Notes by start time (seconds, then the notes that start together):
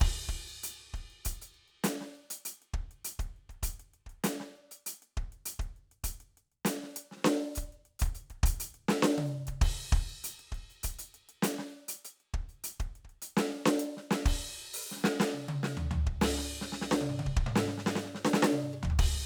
0.01 kick, crash
0.29 closed hi-hat, kick
0.48 closed hi-hat
0.64 closed hi-hat
0.81 closed hi-hat
0.95 kick, closed hi-hat
1.11 closed hi-hat
1.26 closed hi-hat, kick
1.43 closed hi-hat
1.55 closed hi-hat
1.69 closed hi-hat
1.85 closed hi-hat, snare
2.02 snare
2.16 closed hi-hat
2.31 closed hi-hat
2.46 closed hi-hat
2.63 closed hi-hat
2.75 kick, closed hi-hat
2.92 closed hi-hat
3.06 closed hi-hat
3.20 kick, closed hi-hat
3.37 closed hi-hat
3.50 kick, closed hi-hat
3.64 closed hi-hat, kick
3.81 closed hi-hat
3.95 closed hi-hat
4.07 kick, closed hi-hat
4.25 closed hi-hat, snare
4.41 snare
4.57 closed hi-hat
4.72 closed hi-hat
4.87 closed hi-hat
5.03 closed hi-hat
5.18 kick, closed hi-hat
5.33 closed hi-hat
5.46 closed hi-hat
5.60 kick, closed hi-hat
5.77 closed hi-hat
5.92 closed hi-hat
6.05 closed hi-hat, kick
6.21 closed hi-hat
6.38 closed hi-hat
6.53 closed hi-hat
6.66 closed hi-hat, snare
6.84 snare
6.97 closed hi-hat
7.12 snare
7.17 snare
7.22 snare
7.25 snare
7.56 closed hi-hat, kick
7.73 closed hi-hat
7.86 closed hi-hat
8.00 closed hi-hat, kick
8.16 closed hi-hat
8.31 kick, closed hi-hat
8.44 closed hi-hat, kick
8.61 closed hi-hat
8.75 closed hi-hat
8.89 snare
9.03 snare
9.19 high tom
9.27 hi-hat pedal
9.33 mid tom
9.48 kick, closed hi-hat
9.62 kick, crash
9.78 closed hi-hat
9.93 kick, closed hi-hat
10.10 closed hi-hat
10.25 closed hi-hat
10.40 closed hi-hat
10.53 kick, closed hi-hat
10.71 closed hi-hat
10.84 closed hi-hat, kick
11.00 closed hi-hat
11.15 closed hi-hat
11.30 closed hi-hat
11.43 closed hi-hat, snare
11.59 snare
11.71 closed hi-hat
11.89 closed hi-hat
12.06 closed hi-hat
12.21 closed hi-hat
12.35 kick, closed hi-hat
12.50 closed hi-hat
12.65 closed hi-hat
12.81 kick, closed hi-hat
12.96 closed hi-hat
13.05 kick
13.10 closed hi-hat
13.23 closed hi-hat
13.38 snare
13.54 closed hi-hat
13.67 snare
13.80 closed hi-hat
13.98 snare
14.12 snare
14.27 kick, crash
14.75 open hi-hat
14.92 snare
14.97 snare, hi-hat pedal
15.01 snare
15.05 snare
15.21 snare
15.35 high tom
15.49 high tom
15.64 snare
15.78 floor tom
15.92 floor tom
16.07 kick
16.22 snare, crash
16.39 snare
16.62 snare
16.73 snare
16.82 snare
16.92 snare
16.97 hi-hat pedal
17.02 high tom
17.10 mid tom
17.20 high tom
17.27 kick
17.38 kick
17.47 mid tom
17.57 snare
17.69 snare
17.79 snare
17.87 snare
17.96 snare
18.05 snare
18.16 snare
18.26 snare
18.34 snare
18.43 snare
18.51 hi-hat pedal, high tom
18.63 mid tom
18.74 percussion
18.84 kick, floor tom
18.91 floor tom
19.00 kick, crash